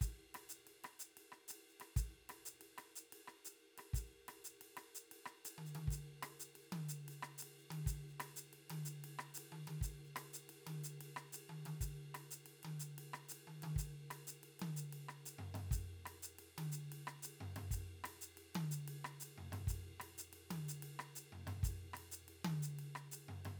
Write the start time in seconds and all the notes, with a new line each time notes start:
0.01 kick, hi-hat pedal, ride
0.34 cross-stick, ride
0.49 hi-hat pedal
0.67 ride
0.84 cross-stick, ride
0.99 hi-hat pedal
1.17 ride
1.32 cross-stick
1.48 hi-hat pedal, ride
1.69 hi-hat pedal
1.80 cross-stick, ride
1.96 kick, hi-hat pedal, ride
2.29 cross-stick, ride
2.45 hi-hat pedal
2.61 ride
2.78 cross-stick, ride
2.96 hi-hat pedal
3.12 ride
3.28 cross-stick
3.45 hi-hat pedal, ride
3.78 cross-stick, ride
3.94 kick, hi-hat pedal, ride
4.28 cross-stick, ride
4.44 hi-hat pedal
4.61 ride
4.77 cross-stick, ride
4.95 hi-hat pedal
5.11 ride
5.26 cross-stick
5.45 hi-hat pedal, ride
5.58 high tom
5.66 hi-hat pedal
5.75 high tom, ride
5.87 kick, ride
5.92 hi-hat pedal
6.23 cross-stick, ride
6.40 hi-hat pedal
6.55 ride
6.61 hi-hat pedal
6.72 high tom, ride
6.89 hi-hat pedal
7.08 hi-hat pedal, ride
7.23 cross-stick
7.38 hi-hat pedal
7.43 ride
7.59 hi-hat pedal
7.70 high tom, ride
7.86 kick, hi-hat pedal, ride
8.09 hi-hat pedal
8.20 cross-stick, ride
8.36 hi-hat pedal
8.53 ride
8.70 high tom, ride
8.85 hi-hat pedal
9.04 ride
9.19 cross-stick
9.34 hi-hat pedal, ride
9.52 high tom
9.67 high tom, ride
9.81 kick, hi-hat pedal, ride
10.05 hi-hat pedal
10.16 cross-stick, ride
10.33 hi-hat pedal
10.49 ride
10.67 high tom, ride
10.84 hi-hat pedal
11.01 ride
11.16 cross-stick
11.32 hi-hat pedal, ride
11.49 high tom
11.65 high tom, ride
11.81 kick, hi-hat pedal, ride
12.14 cross-stick, ride
12.31 hi-hat pedal
12.46 ride
12.63 high tom, ride
12.80 hi-hat pedal
12.98 hi-hat pedal, ride
13.14 cross-stick
13.29 hi-hat pedal, ride
13.47 high tom
13.62 high tom, ride
13.76 kick, hi-hat pedal, ride
14.11 cross-stick, ride
14.27 hi-hat pedal
14.43 ride
14.60 high tom, ride
14.76 hi-hat pedal
14.93 ride
15.09 cross-stick
15.26 hi-hat pedal, ride
15.39 floor tom
15.54 floor tom, ride
15.71 kick, hi-hat pedal, ride
16.06 cross-stick, ride
16.23 hi-hat pedal
16.39 ride
16.58 high tom, ride
16.72 hi-hat pedal
16.92 ride
17.07 cross-stick
17.23 hi-hat pedal, ride
17.40 floor tom
17.56 floor tom, ride
17.71 kick, hi-hat pedal, ride
18.04 cross-stick, ride
18.21 hi-hat pedal
18.37 ride
18.55 high tom, ride
18.71 hi-hat pedal
18.88 ride
19.05 cross-stick
19.20 hi-hat pedal, ride
19.38 floor tom
19.52 floor tom, ride
19.67 kick, hi-hat pedal, ride
20.00 cross-stick, ride
20.18 hi-hat pedal
20.33 ride
20.51 high tom, ride
20.68 hi-hat pedal
20.82 ride
20.99 cross-stick
21.15 hi-hat pedal, ride
21.32 floor tom
21.47 floor tom, ride
21.63 kick, hi-hat pedal, ride
21.94 cross-stick, ride
22.12 hi-hat pedal
22.28 ride
22.45 high tom, ride
22.62 hi-hat pedal
22.79 ride
22.95 cross-stick
23.11 hi-hat pedal, ride
23.28 floor tom
23.45 floor tom, ride